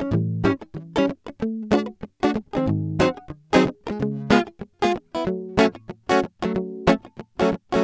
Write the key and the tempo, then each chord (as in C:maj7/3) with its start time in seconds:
F# minor, 187 BPM
0.14 A:7
1.43 D:maj(#11,b9)/b2
2.71 G#:7
3.99 C#:7
5.28 F#:min